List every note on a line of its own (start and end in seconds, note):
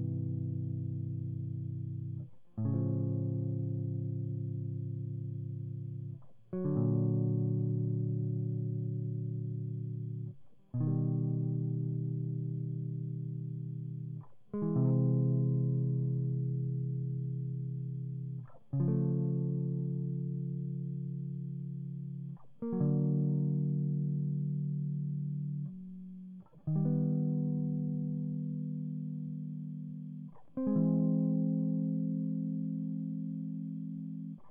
2.59 6.16 A2
2.66 6.19 C#3
2.74 6.19 F3
6.53 10.34 F#3
6.65 10.33 D3
6.77 10.34 A#2
10.75 14.22 B2
10.81 14.25 D#3
10.88 14.23 G3
14.54 18.44 G#3
14.62 18.44 E3
14.77 18.47 C3
18.74 22.37 C#3
18.80 22.39 F3
18.88 21.83 A3
22.62 25.88 A#3
22.73 26.45 F#3
22.81 25.70 D3
26.68 30.31 D#3
26.76 30.31 G3
26.85 30.31 B3
30.57 34.36 C4
30.67 34.39 G#3
30.76 34.40 E3